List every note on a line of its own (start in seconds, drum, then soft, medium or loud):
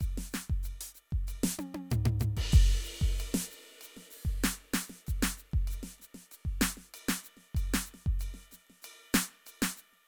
0.01 kick medium
0.01 hi-hat pedal medium
0.01 ride bell soft
0.18 snare medium
0.31 snare medium
0.31 hi-hat pedal soft
0.31 ride soft
0.50 kick medium
0.50 ride soft
0.64 hi-hat pedal medium
0.64 ride bell soft
0.82 open hi-hat loud
0.95 hi-hat pedal medium
0.95 ride soft
1.12 kick medium
1.12 ride soft
1.28 hi-hat pedal medium
1.28 ride bell medium
1.44 snare loud
1.59 hi-hat pedal medium
1.59 high tom medium
1.75 high tom medium
1.91 floor tom loud
1.91 hi-hat pedal medium
2.06 floor tom loud
2.20 floor tom loud
2.20 hi-hat pedal medium
2.38 kick soft
2.38 ride loud
2.53 kick loud
2.53 hi-hat pedal medium
2.53 crash loud
2.84 hi-hat pedal medium
2.91 ride soft
3.02 kick medium
3.02 ride soft
3.19 hi-hat pedal medium
3.19 ride bell medium
3.35 snare loud
3.50 hi-hat pedal medium
3.50 ride soft
3.65 ride soft
3.82 hi-hat pedal medium
3.82 ride bell medium
3.97 snare soft
4.11 hi-hat pedal medium
4.11 ride soft
4.26 kick medium
4.26 ride soft
4.44 snare loud
4.44 hi-hat pedal loud
4.44 ride medium
4.74 snare medium
4.74 hi-hat pedal medium
4.74 ride bell soft
4.90 snare soft
5.08 kick medium
5.08 hi-hat pedal medium
5.08 ride medium
5.23 snare loud
5.38 hi-hat pedal medium
5.52 kick medium
5.52 ride soft
5.68 hi-hat pedal medium
5.68 ride bell medium
5.84 snare soft
5.99 snare soft
5.99 hi-hat pedal medium
5.99 ride soft
6.15 snare soft
6.15 ride soft
6.32 hi-hat pedal medium
6.32 ride medium
6.46 kick soft
6.62 snare loud
6.62 hi-hat pedal medium
6.78 snare soft
6.95 hi-hat pedal medium
6.95 ride bell medium
7.09 snare loud
7.24 hi-hat pedal medium
7.24 ride soft
7.38 snare soft
7.38 ride soft
7.56 kick medium
7.56 hi-hat pedal medium
7.56 ride bell medium
7.74 snare loud
7.86 hi-hat pedal medium
7.95 snare soft
8.07 kick medium
8.20 hi-hat pedal medium
8.20 ride bell medium
8.35 snare soft
8.52 snare soft
8.52 hi-hat pedal medium
8.52 ride soft
8.68 snare soft
8.68 ride soft
8.83 hi-hat pedal medium
8.83 ride bell medium
9.14 snare loud
9.14 hi-hat pedal medium
9.31 ride soft
9.47 hi-hat pedal medium
9.47 ride bell medium
9.63 snare loud
9.77 hi-hat pedal medium
9.77 ride soft
9.93 snare soft
9.93 ride soft